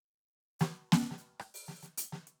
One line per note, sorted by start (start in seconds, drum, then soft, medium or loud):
0.60 snare loud
0.60 hi-hat pedal medium
0.93 snare loud
1.12 snare soft
1.19 hi-hat pedal soft
1.41 cross-stick medium
1.55 open hi-hat medium
1.69 snare soft
1.83 snare soft
1.83 hi-hat pedal medium
1.98 closed hi-hat loud
2.13 snare medium
2.28 closed hi-hat soft